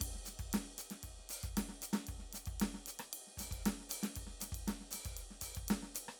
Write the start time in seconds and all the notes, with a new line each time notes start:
0.01 kick, ride
0.15 snare
0.26 snare, hi-hat pedal, ride
0.39 kick, ride
0.53 snare, ride
0.65 snare
0.78 hi-hat pedal, ride
0.90 snare, ride
1.03 kick, ride
1.19 snare
1.29 snare, hi-hat pedal, ride
1.43 kick, ride
1.57 snare, ride
1.69 snare
1.82 hi-hat pedal, ride
1.93 snare, ride
2.07 kick, ride
2.19 snare
2.33 snare, hi-hat pedal, ride
2.46 kick, ride
2.60 snare, ride
2.74 snare
2.86 hi-hat pedal, ride
2.99 cross-stick, ride
3.13 hi-hat pedal, ride
3.27 snare
3.37 kick, snare, hi-hat pedal, ride
3.51 kick, ride
3.63 snare, hi-hat pedal, ride
3.80 snare
3.90 hi-hat pedal, ride
4.03 snare, ride
4.15 kick, hi-hat pedal, ride
4.27 snare
4.41 snare, hi-hat pedal, ride
4.52 kick, ride
4.66 snare, hi-hat pedal, ride
4.81 snare
4.91 snare, hi-hat pedal, ride
5.05 kick, ride
5.17 ride
5.31 snare
5.41 kick, hi-hat pedal, ride
5.55 kick, ride
5.68 snare, ride
5.83 snare
5.95 hi-hat pedal, ride
6.08 cross-stick